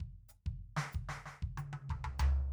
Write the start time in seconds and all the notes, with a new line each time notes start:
0.00 kick
0.29 hi-hat pedal
0.46 kick
0.76 snare
0.92 kick, hi-hat pedal
1.09 snare
1.26 snare
1.42 kick
1.57 hi-hat pedal, high tom
1.73 high tom
1.89 kick, floor tom
2.04 floor tom
2.19 floor tom, hi-hat pedal